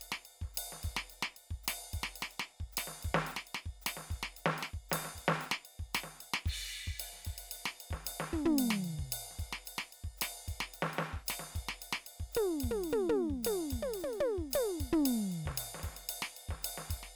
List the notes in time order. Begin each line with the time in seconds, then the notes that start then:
0.01 hi-hat pedal, ride
0.12 snare
0.25 ride
0.41 kick, snare
0.54 hi-hat pedal, ride
0.72 snare
0.83 kick, ride
0.97 snare
1.10 hi-hat pedal, ride
1.23 snare
1.36 ride
1.51 kick
1.64 hi-hat pedal
1.68 snare, ride bell
1.93 kick, ride
2.03 snare
2.16 hi-hat pedal, ride
2.22 snare
2.31 ride
2.40 snare
2.60 kick
2.72 hi-hat pedal
2.77 snare, ride bell
2.87 snare
3.03 kick, ride
3.10 kick
3.14 snare
3.27 hi-hat pedal, ride
3.36 snare
3.47 ride
3.55 snare
3.66 kick
3.81 hi-hat pedal
3.86 snare, ride bell
3.97 snare
4.10 kick, ride
4.23 snare
4.36 hi-hat pedal, ride
4.46 snare
4.58 ride
4.63 snare
4.73 kick
4.89 snare, hi-hat pedal
4.93 ride bell
5.05 snare
5.15 kick, ride
5.28 snare
5.41 hi-hat pedal, ride
5.51 snare
5.65 ride
5.79 kick
5.94 snare, hi-hat pedal, ride bell
6.04 snare
6.20 ride
6.34 snare
6.46 kick, hi-hat pedal, crash
6.58 kick
6.87 kick
6.99 hi-hat pedal, ride
7.13 snare
7.18 snare
7.25 kick, snare, ride
7.27 snare
7.38 ride
7.51 hi-hat pedal, ride bell
7.66 snare
7.80 ride
7.91 kick, snare
8.04 hi-hat pedal, ride
8.20 snare
8.32 kick, floor tom
8.45 floor tom
8.58 hi-hat pedal, ride
8.70 snare
8.84 ride
8.99 kick
9.11 hi-hat pedal, ride
9.31 snare
9.39 kick, ride
9.53 snare
9.65 hi-hat pedal, ride
9.78 snare
9.92 ride
10.04 kick
10.17 hi-hat pedal, ride bell
10.22 snare
10.48 kick, ride
10.60 snare
10.73 hi-hat pedal, ride bell
10.82 snare
10.93 ride
10.98 snare
11.13 kick
11.26 hi-hat pedal, ride bell
11.30 snare
11.39 snare
11.55 kick, ride
11.69 snare
11.81 hi-hat pedal, ride bell
11.93 snare
12.06 ride
12.20 kick
12.32 hi-hat pedal, ride bell
12.36 mid tom
12.60 kick, ride
12.69 kick, mid tom
12.84 ride
12.90 hi-hat pedal, mid tom
13.09 mid tom
13.30 kick
13.43 hi-hat pedal, mid tom, ride bell
13.70 kick, ride
13.78 kick
13.82 high tom
13.94 ride
14.00 hi-hat pedal, high tom
14.13 ride bell
14.20 high tom
14.38 kick
14.51 hi-hat pedal, ride bell
14.55 high tom
14.80 kick, ride
14.92 floor tom
15.05 hi-hat pedal, ride bell
15.32 ride
15.46 kick, snare
15.57 hi-hat pedal, ride bell
15.75 snare
15.80 kick, snare, ride
15.84 snare
15.89 snare
15.93 snare, ride
15.97 snare
16.09 hi-hat pedal, ride bell
16.22 snare
16.36 ride
16.49 kick, snare
16.62 hi-hat pedal, ride
16.78 snare
16.90 kick, ride
17.03 snare